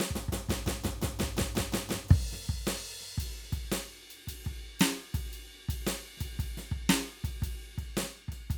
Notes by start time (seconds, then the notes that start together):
0.00 snare
0.11 kick
0.15 snare, floor tom
0.28 kick, floor tom
0.32 snare
0.49 kick, snare, floor tom
0.66 kick, snare, floor tom
0.84 kick, snare, floor tom
1.02 kick, snare, floor tom
1.19 kick, snare, floor tom
1.37 snare, floor tom
1.41 kick
1.55 snare, floor tom
1.59 kick
1.72 snare, floor tom
1.89 kick, snare, floor tom
2.09 kick, snare, crash
2.33 snare
2.49 kick
2.66 snare, crash
3.01 snare
3.18 kick, ride
3.26 snare
3.35 snare
3.40 snare
3.43 snare
3.52 kick, ride
3.72 snare, ride
4.10 ride
4.22 snare
4.27 kick, ride
4.42 kick, snare, ride bell
4.63 kick
4.80 snare, ride
5.14 kick, ride
5.29 snare, ride
5.35 snare
5.69 kick, ride
5.87 snare, ride
6.17 kick, snare, ride
6.35 snare
6.39 kick, ride
6.57 snare
6.71 kick
6.89 snare, ride
7.24 kick, snare, ride
7.41 kick, snare, ride
7.51 snare
7.78 kick, ride bell
7.97 snare, ride bell
8.03 snare
8.28 kick, snare, ride bell
8.47 kick, snare, ride